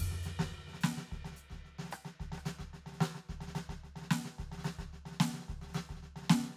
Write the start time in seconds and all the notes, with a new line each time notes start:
0.01 kick, ride
0.06 kick
0.12 kick, snare
0.24 snare, hi-hat pedal
0.40 kick, snare
0.52 snare
0.59 snare
0.65 snare
0.68 snare
0.75 snare
0.81 snare, hi-hat pedal
0.85 snare
0.98 snare
1.13 kick, snare
1.20 kick
1.26 snare
1.33 snare
1.37 hi-hat pedal
1.51 kick, snare
1.53 snare
1.58 kick
1.66 snare
1.73 snare
1.80 snare
1.85 snare
1.89 snare, hi-hat pedal
1.94 cross-stick
2.06 snare
2.21 kick, snare
2.27 kick
2.33 snare
2.39 cross-stick
2.47 snare, hi-hat pedal
2.60 kick, snare
2.74 snare
2.87 snare
2.93 snare
2.99 snare
3.02 snare, hi-hat pedal
3.16 snare
3.30 kick, snare
3.36 kick
3.42 snare
3.48 snare
3.55 snare, hi-hat pedal
3.56 snare
3.70 kick, snare
3.76 kick
3.85 snare
3.97 snare
4.03 snare
4.09 snare
4.12 snare, hi-hat pedal
4.26 snare
4.40 kick, snare
4.47 kick
4.53 snare
4.59 snare
4.65 snare, hi-hat pedal
4.80 kick, snare
4.94 snare
5.07 snare
5.12 snare
5.18 snare
5.21 snare, hi-hat pedal
5.35 snare
5.40 snare
5.49 kick, snare
5.57 kick
5.63 snare
5.68 snare
5.73 snare, hi-hat pedal
5.76 snare
5.90 kick, snare
5.95 snare
6.04 snare
6.17 snare
6.23 snare
6.28 snare
6.31 snare, hi-hat pedal
6.45 snare
6.50 snare